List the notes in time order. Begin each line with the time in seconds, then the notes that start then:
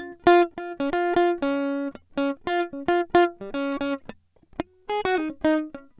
0.00 F4
0.28 F4
0.59 F4
0.81 C#4
0.94 F4
1.18 F4
1.44 C#4
2.19 C#4
2.48 F4
2.75 C#4
2.89 F4
3.16 F4
3.42 G3
3.55 C#4
3.82 C#4
4.91 G#4
5.06 F#4
5.16 D#4
5.46 D#4